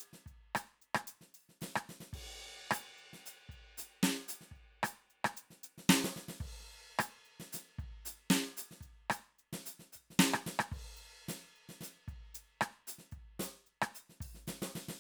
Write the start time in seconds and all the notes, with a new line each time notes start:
0.01 closed hi-hat
0.14 snare
0.27 kick, closed hi-hat
0.55 closed hi-hat, cross-stick
0.82 closed hi-hat
0.95 cross-stick
1.08 closed hi-hat
1.22 snare
1.35 open hi-hat
1.50 snare
1.61 snare, hi-hat pedal
1.76 cross-stick
1.90 snare
2.01 snare
2.13 kick, ride
2.71 closed hi-hat, cross-stick
2.99 closed hi-hat
3.14 snare
3.26 closed hi-hat
3.50 kick, closed hi-hat
3.78 closed hi-hat
4.04 snare
4.29 closed hi-hat
4.41 snare
4.52 kick, closed hi-hat
4.84 closed hi-hat, cross-stick
5.10 closed hi-hat
5.25 cross-stick
5.37 closed hi-hat
5.51 snare
5.64 closed hi-hat
5.78 snare
5.89 snare, hi-hat pedal
6.05 snare
6.17 snare
6.29 snare
6.41 kick, crash
6.61 snare
6.99 closed hi-hat, cross-stick
7.26 closed hi-hat
7.40 snare
7.53 closed hi-hat, snare
7.79 kick, closed hi-hat
8.06 closed hi-hat
8.31 snare
8.57 closed hi-hat
8.72 snare
8.81 kick, closed hi-hat
9.10 closed hi-hat, cross-stick
9.39 closed hi-hat
9.53 snare
9.66 closed hi-hat
9.80 snare
9.93 closed hi-hat, kick
10.11 snare
10.20 snare
10.34 cross-stick
10.47 snare
10.60 cross-stick
10.72 kick, crash
10.97 closed hi-hat
11.29 closed hi-hat, snare
11.56 closed hi-hat
11.69 snare
11.81 closed hi-hat, snare
12.08 kick, closed hi-hat
12.25 snare
12.35 closed hi-hat
12.61 cross-stick
12.88 closed hi-hat
12.99 snare
13.12 kick, closed hi-hat
13.40 closed hi-hat, snare
13.67 closed hi-hat
13.82 cross-stick
13.95 closed hi-hat
14.10 snare
14.21 kick, open hi-hat
14.35 snare
14.48 snare, hi-hat pedal
14.62 snare
14.76 snare
14.89 snare